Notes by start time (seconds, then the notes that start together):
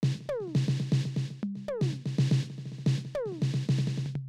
0.03 snare
0.15 snare
0.21 snare
0.26 snare, high tom
0.40 snare
0.47 snare
0.55 snare
0.68 snare
0.80 snare
0.92 snare
1.05 snare
1.16 snare
1.30 snare
1.43 mid tom
1.55 snare
1.68 high tom
1.81 snare
1.93 snare
2.06 snare
2.19 snare
2.31 snare
2.43 snare
2.50 snare
2.58 snare
2.66 snare
2.72 snare
2.78 snare
2.86 snare
2.98 snare
3.05 snare
3.15 high tom
3.26 snare
3.32 snare
3.38 snare
3.42 snare
3.54 snare
3.69 snare
3.79 snare
3.87 snare
3.98 snare
4.06 floor tom
4.15 floor tom